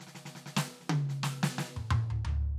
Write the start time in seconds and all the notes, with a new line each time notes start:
0.00 snare
0.07 snare
0.15 snare
0.25 snare
0.35 snare
0.46 snare
0.56 snare
0.80 snare
0.90 high tom
1.09 snare
1.23 snare
1.43 snare
1.58 snare
1.76 mid tom
1.91 mid tom
2.10 floor tom
2.25 floor tom